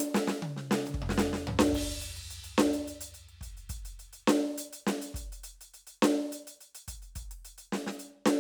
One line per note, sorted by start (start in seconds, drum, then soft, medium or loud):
0.01 closed hi-hat loud
0.15 snare loud
0.28 snare loud
0.34 hi-hat pedal soft
0.43 high tom loud
0.57 snare medium
0.72 snare loud
0.86 hi-hat pedal soft
0.86 high tom medium
0.95 kick medium
1.02 kick soft
1.02 mid tom medium
1.05 kick soft
1.10 snare medium
1.18 snare loud
1.34 snare medium
1.48 floor tom medium
1.60 snare loud
1.66 hi-hat pedal soft
1.73 kick soft
1.73 crash loud
1.79 kick soft
2.02 closed hi-hat medium
2.17 closed hi-hat soft
2.31 closed hi-hat medium
2.44 closed hi-hat medium
2.59 snare loud
2.74 closed hi-hat medium
2.88 closed hi-hat medium
3.01 closed hi-hat medium
3.15 closed hi-hat medium
3.29 closed hi-hat soft
3.42 closed hi-hat medium
3.42 kick soft
3.58 closed hi-hat soft
3.70 closed hi-hat medium
3.70 kick soft
3.78 kick soft
3.86 closed hi-hat medium
4.00 closed hi-hat medium
4.13 closed hi-hat medium
4.28 snare loud
4.58 closed hi-hat loud
4.73 closed hi-hat medium
4.87 snare loud
5.02 closed hi-hat medium
5.15 closed hi-hat medium
5.15 kick soft
5.21 kick soft
5.33 closed hi-hat soft
5.44 closed hi-hat medium
5.62 closed hi-hat medium
5.74 closed hi-hat medium
5.87 closed hi-hat medium
6.03 snare loud
6.33 closed hi-hat medium
6.48 closed hi-hat medium
6.61 closed hi-hat medium
6.75 closed hi-hat medium
6.88 closed hi-hat medium
6.88 kick soft
7.03 closed hi-hat soft
7.16 closed hi-hat medium
7.16 kick soft
7.32 closed hi-hat medium
7.45 closed hi-hat medium
7.59 closed hi-hat medium
7.73 snare loud
7.87 snare medium
7.92 hi-hat pedal soft
8.00 closed hi-hat medium
8.26 snare loud